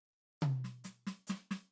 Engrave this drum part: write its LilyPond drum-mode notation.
\new DrumStaff \drummode { \time 4/4 \tempo 4 = 140 r4 <hhp tommh>8 sn8 <hhp sn>8 sn8 <hhp sn>8 sn8 | }